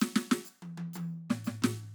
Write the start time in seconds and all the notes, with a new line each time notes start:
0.01 snare, percussion
0.16 snare, percussion
0.32 snare
0.45 percussion
0.63 high tom
0.78 high tom
0.94 high tom, percussion
1.30 snare, floor tom
1.45 snare, floor tom, percussion
1.63 snare, floor tom